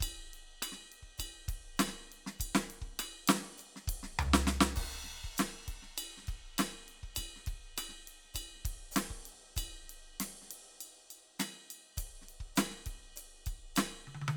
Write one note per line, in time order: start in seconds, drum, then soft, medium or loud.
0.01 kick medium
0.01 hi-hat pedal soft
0.01 ride bell loud
0.09 kick soft
0.34 ride soft
0.63 cross-stick medium
0.63 hi-hat pedal soft
0.63 ride bell loud
0.72 snare soft
0.92 ride soft
1.03 kick soft
1.18 kick soft
1.18 snare soft
1.18 hi-hat pedal soft
1.18 ride bell loud
1.49 kick medium
1.49 ride medium
1.60 kick soft
1.78 snare loud
1.78 hi-hat pedal soft
1.78 ride bell loud
1.88 snare soft
2.12 ride soft
2.27 snare medium
2.40 kick soft
2.40 hi-hat pedal soft
2.40 ride bell loud
2.46 kick soft
2.55 snare loud
2.71 ride medium
2.82 kick soft
2.88 kick soft
3.00 cross-stick medium
3.00 hi-hat pedal soft
3.00 ride bell loud
3.28 snare loud
3.28 ride loud
3.35 snare soft
3.58 hi-hat pedal soft
3.58 ride soft
3.77 snare soft
3.88 kick medium
3.88 ride loud
3.96 kick soft
3.99 kick soft
4.04 snare soft
4.19 hi-hat pedal soft
4.19 floor tom loud
4.34 snare loud
4.48 snare loud
4.61 snare loud
4.76 kick medium
4.76 hi-hat pedal soft
4.76 crash medium
4.83 kick soft
4.89 kick soft
4.96 cross-stick soft
5.04 snare soft
5.25 kick soft
5.38 snare medium
5.38 hi-hat pedal medium
5.38 ride bell medium
5.68 kick soft
5.68 ride medium
5.83 snare soft
5.98 hi-hat pedal soft
5.98 ride bell loud
6.18 snare soft
6.23 snare soft
6.27 kick soft
6.27 snare soft
6.27 ride soft
6.36 kick soft
6.59 snare medium
6.59 hi-hat pedal medium
6.59 ride bell loud
6.89 ride soft
7.04 kick soft
7.16 kick soft
7.16 snare soft
7.16 hi-hat pedal medium
7.16 ride bell loud
7.37 cross-stick soft
7.37 snare soft
7.46 kick soft
7.46 snare soft
7.46 ride medium
7.54 kick soft
7.58 kick soft
7.77 cross-stick medium
7.77 hi-hat pedal soft
7.77 ride bell loud
7.90 snare soft
8.08 ride medium
8.25 snare soft
8.35 kick soft
8.35 snare soft
8.35 hi-hat pedal medium
8.35 ride bell loud
8.56 snare soft
8.59 snare soft
8.65 kick medium
8.65 ride medium
8.73 kick soft
8.92 hi-hat pedal medium
8.97 snare medium
8.97 ride loud
9.11 kick soft
9.11 snare soft
9.26 ride medium
9.57 kick medium
9.57 hi-hat pedal medium
9.57 ride bell loud
9.64 kick soft
9.68 kick soft
9.84 snare soft
9.90 ride medium
10.21 snare medium
10.21 hi-hat pedal medium
10.21 ride loud
10.42 snare soft
10.48 snare soft
10.48 ride medium
10.76 snare soft
10.78 snare soft
10.78 ride bell medium
11.11 ride bell medium
11.40 snare medium
11.40 hi-hat pedal medium
11.40 ride bell loud
11.71 ride bell medium
11.98 kick soft
11.98 hi-hat pedal medium
11.98 ride medium
12.22 snare soft
12.29 ride soft
12.41 kick soft
12.56 snare loud
12.56 hi-hat pedal medium
12.56 ride bell loud
12.71 snare soft
12.87 kick soft
12.87 ride medium
12.93 kick soft
13.17 hi-hat pedal medium
13.17 ride medium
13.47 kick soft
13.47 ride bell medium
13.54 kick soft
13.76 snare loud
13.76 hi-hat pedal medium
13.76 ride bell loud
14.08 high tom soft
14.15 high tom medium
14.22 high tom medium
14.29 high tom loud